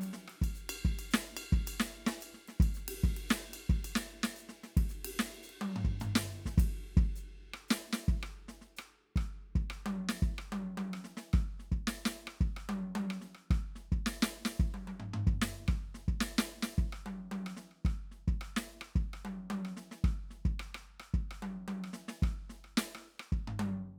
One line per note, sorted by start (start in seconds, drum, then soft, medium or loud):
0.01 hi-hat pedal medium
0.01 ride medium
0.13 snare soft
0.28 cross-stick medium
0.28 ride soft
0.42 kick medium
0.42 ride bell medium
0.55 hi-hat pedal medium
0.69 ride bell loud
0.85 kick medium
0.99 ride bell medium
1.11 snare loud
1.11 hi-hat pedal medium
1.37 ride bell loud
1.53 kick medium
1.67 hi-hat pedal medium
1.67 ride bell loud
1.80 snare loud
2.07 snare loud
2.20 hi-hat pedal medium
2.20 ride bell medium
2.32 kick soft
2.32 snare soft
2.48 snare soft
2.48 ride soft
2.60 kick loud
2.60 ride bell medium
2.74 snare soft
2.74 hi-hat pedal medium
2.88 ride loud
3.04 kick medium
3.17 ride medium
3.29 snare loud
3.29 hi-hat pedal medium
3.54 ride bell medium
3.70 kick medium
3.85 hi-hat pedal medium
3.85 ride bell medium
3.95 snare loud
4.23 snare loud
4.37 hi-hat pedal medium
4.37 ride bell soft
4.49 snare soft
4.64 snare soft
4.64 ride bell soft
4.77 kick medium
4.77 ride medium
4.89 snare soft
4.89 hi-hat pedal medium
5.05 ride loud
5.19 snare loud
5.35 ride soft
5.43 hi-hat pedal medium
5.49 ride soft
5.61 high tom loud
5.67 hi-hat pedal soft
5.76 floor tom loud
5.85 kick medium
6.00 floor tom loud
6.00 hi-hat pedal medium
6.15 snare loud
6.46 kick soft
6.46 snare medium
6.58 kick loud
6.58 hi-hat pedal medium
6.58 ride medium
6.97 kick loud
7.16 hi-hat pedal medium
7.54 cross-stick medium
7.68 snare loud
7.68 hi-hat pedal soft
7.93 snare medium
8.05 kick medium
8.05 snare soft
8.23 cross-stick medium
8.49 snare soft
8.61 snare soft
8.77 cross-stick medium
8.77 hi-hat pedal medium
9.16 kick medium
9.16 cross-stick medium
9.56 kick medium
9.70 cross-stick medium
9.86 high tom loud
10.09 snare medium
10.22 kick medium
10.38 cross-stick medium
10.52 high tom loud
10.78 high tom loud
10.94 cross-stick medium
11.04 snare soft
11.17 snare medium
11.33 kick medium
11.33 cross-stick medium
11.60 snare soft
11.72 kick medium
11.87 snare medium
12.05 snare loud
12.27 cross-stick medium
12.41 kick medium
12.57 cross-stick medium
12.69 high tom loud
12.95 high tom loud
13.10 cross-stick medium
13.21 snare soft
13.35 cross-stick medium
13.51 kick medium
13.51 cross-stick medium
13.76 snare soft
13.92 kick medium
14.06 snare medium
14.22 snare loud
14.45 snare medium
14.60 kick medium
14.74 high tom medium
14.87 high tom medium
15.00 floor tom medium
15.14 floor tom loud
15.27 kick medium
15.42 snare loud
15.68 kick medium
15.68 cross-stick medium
15.95 snare soft
16.08 kick medium
16.21 snare loud
16.38 snare loud
16.63 snare medium
16.78 kick medium
16.93 cross-stick medium
17.06 high tom medium
17.32 high tom loud
17.46 cross-stick medium
17.57 snare soft
17.71 cross-stick soft
17.85 kick medium
17.85 cross-stick medium
18.12 snare soft
18.28 kick medium
18.41 cross-stick medium
18.57 snare medium
18.81 cross-stick medium
18.96 kick medium
19.14 cross-stick medium
19.25 high tom medium
19.50 high tom loud
19.65 cross-stick medium
19.77 snare soft
19.91 snare soft
20.04 kick medium
20.04 cross-stick medium
20.31 snare soft
20.45 kick medium
20.60 cross-stick medium
20.75 cross-stick medium
21.00 cross-stick medium
21.14 kick medium
21.31 cross-stick medium
21.42 high tom medium
21.68 high tom loud
21.84 cross-stick medium
21.93 snare medium
22.08 snare medium
22.22 kick medium
22.22 cross-stick medium
22.50 snare soft
22.64 cross-stick soft
22.77 snare loud
22.95 cross-stick medium
23.20 cross-stick medium
23.32 kick medium
23.48 floor tom medium
23.59 high tom loud